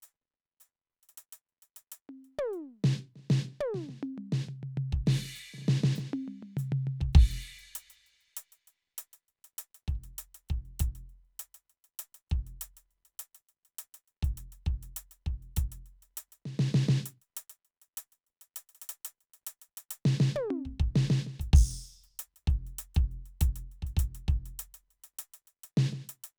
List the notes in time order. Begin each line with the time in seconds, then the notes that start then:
0.01 hi-hat pedal
0.60 hi-hat pedal
1.03 closed hi-hat
1.09 closed hi-hat
1.17 closed hi-hat
1.32 closed hi-hat
1.49 closed hi-hat
1.62 closed hi-hat
1.76 closed hi-hat
1.92 closed hi-hat
2.09 high tom
2.24 closed hi-hat
2.38 high tom
2.53 closed hi-hat
2.84 snare
3.16 snare
3.19 snare
3.30 snare
3.44 snare
3.46 snare
3.48 snare
3.52 snare
3.60 high tom
3.74 snare
3.89 snare
4.03 high tom
4.18 mid tom
4.32 snare
4.49 floor tom
4.63 floor tom
4.77 floor tom
4.92 kick
5.06 snare, crash
5.25 snare
5.35 hi-hat pedal
5.54 snare
5.58 snare
5.62 snare
5.65 snare
5.68 snare
5.83 snare
5.95 snare, hi-hat pedal
6.13 high tom
6.28 mid tom
6.42 mid tom
6.57 floor tom, hi-hat pedal
6.72 floor tom
6.87 floor tom
7.01 kick, floor tom
7.13 kick, hi-hat pedal, crash
7.31 closed hi-hat
7.42 closed hi-hat
7.59 closed hi-hat
7.75 closed hi-hat
7.90 closed hi-hat
8.06 closed hi-hat
8.21 closed hi-hat
8.37 closed hi-hat
8.52 closed hi-hat
8.67 closed hi-hat
8.98 closed hi-hat
9.13 closed hi-hat
9.28 closed hi-hat
9.44 closed hi-hat
9.58 closed hi-hat
9.74 closed hi-hat
9.88 kick, closed hi-hat
9.95 kick
10.04 closed hi-hat
10.18 closed hi-hat
10.34 closed hi-hat
10.49 closed hi-hat, kick
10.65 closed hi-hat
10.79 closed hi-hat, kick
10.95 closed hi-hat
11.09 closed hi-hat
11.25 closed hi-hat
11.39 closed hi-hat
11.54 closed hi-hat
11.70 closed hi-hat
11.84 closed hi-hat
11.99 closed hi-hat
12.14 closed hi-hat
12.30 kick, closed hi-hat
12.46 closed hi-hat
12.61 closed hi-hat
12.77 closed hi-hat
12.91 closed hi-hat
13.05 closed hi-hat
13.19 closed hi-hat
13.35 closed hi-hat
13.49 closed hi-hat
13.65 closed hi-hat
13.78 closed hi-hat
13.94 closed hi-hat
14.08 closed hi-hat
14.22 closed hi-hat, kick
14.37 closed hi-hat
14.52 closed hi-hat
14.66 kick, closed hi-hat
14.83 closed hi-hat
14.96 closed hi-hat
15.11 closed hi-hat
15.26 kick, closed hi-hat
15.42 closed hi-hat
15.56 closed hi-hat, kick
15.72 closed hi-hat
15.86 closed hi-hat
16.02 closed hi-hat
16.17 closed hi-hat
16.32 closed hi-hat
16.45 snare
16.59 snare
16.74 snare
16.89 snare
17.06 closed hi-hat
17.21 closed hi-hat
17.37 closed hi-hat
17.50 closed hi-hat
17.65 closed hi-hat
17.82 closed hi-hat
17.97 closed hi-hat
18.12 closed hi-hat
18.27 closed hi-hat
18.41 closed hi-hat
18.56 closed hi-hat
18.69 closed hi-hat
18.75 closed hi-hat
18.82 closed hi-hat
18.89 closed hi-hat
19.05 closed hi-hat
19.21 closed hi-hat
19.34 closed hi-hat
19.47 closed hi-hat
19.62 closed hi-hat
19.77 closed hi-hat
19.91 closed hi-hat
20.05 snare
20.20 snare
20.35 high tom
20.50 high tom
20.65 kick
20.80 kick
20.96 snare
21.10 snare
21.27 snare
21.39 kick, closed hi-hat
21.53 kick, crash
21.70 closed hi-hat
21.81 closed hi-hat
22.04 closed hi-hat
22.19 closed hi-hat
22.36 closed hi-hat
22.47 kick, closed hi-hat
22.66 closed hi-hat
22.78 closed hi-hat
22.95 closed hi-hat, kick
23.11 closed hi-hat
23.25 closed hi-hat
23.41 closed hi-hat, kick
23.56 closed hi-hat
23.71 closed hi-hat
23.82 kick
23.87 closed hi-hat
23.97 closed hi-hat, kick
24.15 closed hi-hat
24.28 kick, closed hi-hat
24.46 closed hi-hat
24.59 closed hi-hat
24.74 closed hi-hat
24.90 closed hi-hat
25.04 closed hi-hat
25.19 closed hi-hat
25.34 closed hi-hat
25.47 closed hi-hat
25.63 closed hi-hat
25.77 snare
25.93 snare
26.09 closed hi-hat
26.24 closed hi-hat